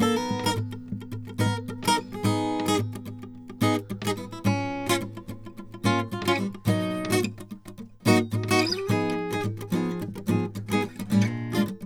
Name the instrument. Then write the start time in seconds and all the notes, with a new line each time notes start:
acoustic guitar
0.01 F3 A#3 C#4 A4
0.17 B3 D#4 A#4
0.34 F#3
0.47 D#4 A#4
1.39 B3 D#4 A#4
1.70 A#4
1.86 D#4 A#4
2.13 G#4
2.24 B3 D#4 G#4
2.69 B3 D#4 G#4
3.62 B3 D#4 G#4
4.05 D#4 G#4
4.46 C#4 F4
4.91 C#4 F4
5.29 C#4
5.85 A#3 C#4 F4
6.12 C#4 F4
6.26 C#4 F4
6.66 B2 F#3 A#3 D#4
7.11 D#4 F#4
8.06 F#3 A#3 D#4 F#4
8.34 A#3 D#4
8.52 A#3 E4 F#4
8.90 F3 B3 D#4 G#4
9.33 D#4 G#4
9.46 D4
9.73 F3 B3 D#4 G#4
10.29 F3 B3 D#4 G#4
10.73 B3 D#4 G#4
11.11 A2 G3 C#4
11.23 G#3
11.28 A#2 D4
11.56 G#3 D4 F4